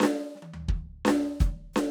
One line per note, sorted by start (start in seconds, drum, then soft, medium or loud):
0.00 snare loud
0.03 snare loud
0.35 snare soft
0.42 high tom medium
0.54 floor tom medium
0.68 kick loud
1.05 snare loud
1.08 snare loud
1.40 open hi-hat medium
1.40 kick loud
1.73 snare loud
1.73 hi-hat pedal medium